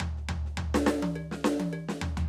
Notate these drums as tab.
Percussion |--------x---x---|
Snare      |-o-o-oo--oo--o--|
High tom   |-------o---o----|
Floor tom  |o-o-o---------oo|